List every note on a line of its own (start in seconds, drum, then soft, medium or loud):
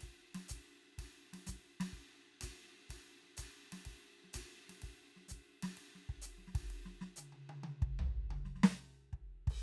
0.01 kick soft
0.01 hi-hat pedal soft
0.01 ride medium
0.35 snare soft
0.35 ride medium
0.49 kick soft
0.49 hi-hat pedal medium
0.49 ride medium
0.99 kick soft
0.99 ride medium
1.34 snare soft
1.34 ride medium
1.47 kick soft
1.47 snare soft
1.47 hi-hat pedal medium
1.47 ride medium
1.81 snare medium
1.81 ride medium
1.93 kick soft
2.42 kick soft
2.42 hi-hat pedal medium
2.42 ride loud
2.90 kick soft
2.90 hi-hat pedal soft
2.90 ride medium
3.23 snare soft
3.38 kick soft
3.38 hi-hat pedal medium
3.38 ride medium
3.73 snare soft
3.73 ride medium
3.86 kick soft
3.86 ride medium
4.25 snare soft
4.34 kick soft
4.34 hi-hat pedal medium
4.34 ride loud
4.70 snare soft
4.70 ride medium
4.83 kick soft
4.83 ride medium
5.17 snare soft
5.29 kick soft
5.29 snare soft
5.29 hi-hat pedal medium
5.29 ride medium
5.63 snare soft
5.63 ride medium
5.78 ride medium
5.96 snare soft
6.10 kick soft
6.22 hi-hat pedal medium
6.22 ride medium
6.38 snare soft
6.48 snare soft
6.55 kick soft
6.55 ride medium
6.66 hi-hat pedal soft
6.71 ride medium
6.86 snare soft
7.02 snare soft
7.17 hi-hat pedal medium
7.17 high tom soft
7.33 high tom soft
7.50 high tom medium
7.64 high tom medium
7.83 kick soft
8.00 floor tom medium
8.31 high tom medium
8.46 snare soft
8.56 snare soft
8.59 snare soft
8.64 snare loud
9.13 kick soft
9.48 kick soft
9.48 crash medium